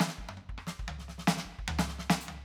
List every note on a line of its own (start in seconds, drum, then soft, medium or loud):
0.00 snare loud
0.07 snare medium
0.18 kick soft
0.29 high tom medium
0.37 high tom medium
0.49 kick soft
0.58 cross-stick medium
0.67 snare medium
0.79 kick medium
0.88 mid tom medium
0.99 snare soft
1.08 snare soft
1.18 snare medium
1.27 snare loud
1.37 snare medium
1.45 kick soft
1.58 kick soft
1.68 mid tom loud
1.79 snare loud
1.88 snare medium
1.98 snare medium
2.10 snare loud
2.21 closed hi-hat medium
2.28 mid tom medium